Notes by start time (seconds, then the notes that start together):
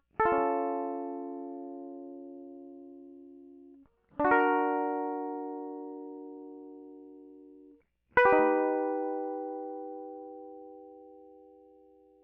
0.20 A4
0.26 F4
0.33 C#4
4.20 D4
4.25 F#4
4.32 A#4
8.18 B4
8.26 G4
8.33 D#4